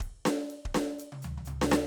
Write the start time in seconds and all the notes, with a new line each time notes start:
0.00 kick, ride
0.25 snare, ride
0.50 ride
0.65 kick
0.74 snare, ride
0.99 hi-hat pedal, ride
1.12 high tom
1.22 floor tom, hi-hat pedal
1.38 floor tom
1.45 hi-hat pedal, high tom
1.61 snare
1.69 snare, hi-hat pedal